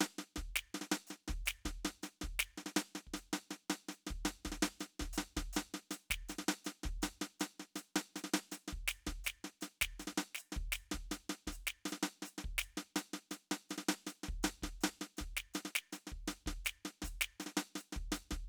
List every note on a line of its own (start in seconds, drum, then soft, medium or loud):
0.01 hi-hat pedal soft
0.19 snare soft
0.36 kick soft
0.36 snare soft
0.56 snare medium
0.75 snare soft
0.81 snare soft
0.92 snare medium
1.07 snare soft
1.07 hi-hat pedal soft
1.28 kick soft
1.28 snare soft
1.46 snare medium
1.46 hi-hat pedal soft
1.65 kick soft
1.65 snare soft
1.85 snare medium
2.03 snare soft
2.03 hi-hat pedal soft
2.22 kick soft
2.22 snare soft
2.40 snare medium
2.40 hi-hat pedal soft
2.58 snare soft
2.66 snare soft
2.76 snare medium
2.76 hi-hat pedal soft
2.95 snare soft
3.07 kick soft
3.14 snare soft
3.14 hi-hat pedal soft
3.33 snare medium
3.51 snare soft
3.70 snare medium
3.89 snare soft
3.89 hi-hat pedal soft
4.07 kick soft
4.07 snare soft
4.25 snare medium
4.25 hi-hat pedal soft
4.45 kick soft
4.45 snare soft
4.52 snare soft
4.63 snare medium
4.80 snare soft
4.80 hi-hat pedal soft
5.00 kick soft
5.00 snare soft
5.02 snare soft
5.13 hi-hat pedal soft
5.18 snare medium
5.37 kick soft
5.37 snare medium
5.53 snare medium
5.53 hi-hat pedal soft
5.74 snare soft
5.91 snare soft
5.91 hi-hat pedal medium
6.11 kick soft
6.11 snare medium
6.29 snare soft
6.29 hi-hat pedal soft
6.39 snare soft
6.48 snare medium
6.65 snare soft
6.65 hi-hat pedal soft
6.84 kick soft
6.84 snare soft
7.02 snare medium
7.02 hi-hat pedal medium
7.22 snare medium
7.40 snare medium
7.40 hi-hat pedal soft
7.60 snare soft
7.76 snare soft
7.76 hi-hat pedal soft
7.96 snare medium
8.16 snare soft
8.16 hi-hat pedal soft
8.24 snare soft
8.34 snare medium
8.52 snare soft
8.52 hi-hat pedal medium
8.68 snare soft
8.73 kick soft
8.88 snare medium
8.88 hi-hat pedal soft
9.07 kick soft
9.07 snare soft
9.24 snare medium
9.24 hi-hat pedal soft
9.44 snare soft
9.61 snare soft
9.61 hi-hat pedal soft
9.82 kick soft
9.82 snare medium
10.00 snare soft
10.00 hi-hat pedal soft
10.07 snare soft
10.18 snare medium
10.35 snare soft
10.35 hi-hat pedal soft
10.52 snare soft
10.57 kick soft
10.72 snare medium
10.72 hi-hat pedal soft
10.92 kick soft
10.92 snare medium
11.11 snare soft
11.11 hi-hat pedal soft
11.30 snare medium
11.47 kick soft
11.47 snare soft
11.52 hi-hat pedal soft
11.67 snare medium
11.86 snare soft
11.86 hi-hat pedal soft
11.92 snare soft
12.03 snare medium
12.22 snare soft
12.22 hi-hat pedal soft
12.38 snare soft
12.45 kick soft
12.58 snare medium
12.58 hi-hat pedal soft
12.77 snare soft
12.96 snare medium
12.96 hi-hat pedal soft
13.14 snare soft
13.31 snare soft
13.31 hi-hat pedal soft
13.51 snare medium
13.70 snare soft
13.70 hi-hat pedal soft
13.78 snare soft
13.89 snare medium
14.07 snare soft
14.07 hi-hat pedal soft
14.24 snare soft
14.29 kick soft
14.43 snare medium
14.43 hi-hat pedal soft
14.63 kick soft
14.63 snare soft
14.81 snare medium
14.81 hi-hat pedal soft
15.01 snare soft
15.17 kick soft
15.17 snare soft
15.17 hi-hat pedal soft
15.37 snare medium
15.54 snare medium
15.54 hi-hat pedal soft
15.65 snare soft
15.76 snare medium
15.93 snare soft
15.93 hi-hat pedal soft
16.07 snare soft
16.12 kick soft
16.28 snare medium
16.28 hi-hat pedal soft
16.47 kick soft
16.47 snare soft
16.65 snare medium
16.65 hi-hat pedal soft
16.85 snare soft
17.02 kick soft
17.02 snare soft
17.02 hi-hat pedal soft
17.21 snare medium
17.40 snare soft
17.40 hi-hat pedal soft
17.46 snare soft
17.57 snare medium
17.76 snare soft
17.76 hi-hat pedal soft
17.93 kick soft
17.93 snare soft
18.12 snare medium
18.12 hi-hat pedal soft
18.31 kick soft
18.31 snare soft